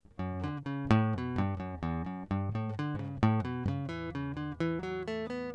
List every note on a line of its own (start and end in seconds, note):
0.21 0.58 F#2
0.45 0.65 D3
0.67 1.01 C#3
0.92 1.18 A2
1.19 1.50 B2
1.38 1.56 G2
1.57 1.80 F#2
1.84 2.06 E2
2.06 2.27 F#2
2.32 2.54 G2
2.57 2.79 A2
2.80 2.99 D3
3.01 3.22 C#3
3.24 3.45 A2
3.46 3.67 B2
3.70 3.87 C#3
3.87 4.01 A2
3.87 4.16 E3
4.16 4.36 C#3
4.38 4.54 D3
4.62 4.82 E3
4.85 5.09 F#3
5.09 5.30 A3
5.32 5.54 B3